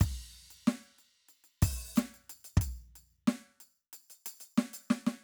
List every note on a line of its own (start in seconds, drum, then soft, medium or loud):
0.01 kick loud
0.01 percussion loud
0.01 crash medium
0.37 percussion soft
0.51 percussion medium
0.68 snare loud
0.84 percussion soft
0.99 percussion soft
1.15 percussion soft
1.29 percussion soft
1.45 percussion soft
1.63 kick loud
1.63 percussion loud
1.97 snare loud
1.97 percussion loud
2.15 percussion soft
2.30 percussion medium
2.45 percussion medium
2.58 kick loud
2.62 percussion loud
2.96 percussion medium
3.28 snare loud
3.61 percussion medium
3.94 percussion medium
4.11 percussion medium
4.27 percussion loud
4.41 percussion medium
4.58 snare loud
4.74 percussion medium
4.91 snare loud
5.07 snare loud